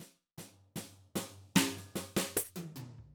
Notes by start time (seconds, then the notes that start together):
0.00 snare
0.38 snare, floor tom
0.76 snare, floor tom
1.16 snare, floor tom
1.56 snare, floor tom
1.77 snare
1.96 snare
2.17 snare
2.37 high tom
2.56 high tom
2.76 mid tom
2.98 kick